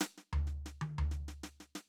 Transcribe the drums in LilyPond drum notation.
\new DrumStaff \drummode { \time 4/4 \tempo 4 = 125 \tuplet 3/2 { <hhp sn>8 sn8 tomfh8 sn8 sn8 tommh8 tomfh8 sn8 sn8 sn8 sn8 sn8 } | }